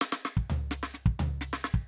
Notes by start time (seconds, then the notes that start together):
0.01 snare
0.12 snare
0.25 snare
0.37 kick
0.50 floor tom
0.71 snare
0.83 snare
0.94 snare
1.06 kick
1.19 floor tom, high tom
1.41 snare
1.53 snare
1.64 snare
1.74 kick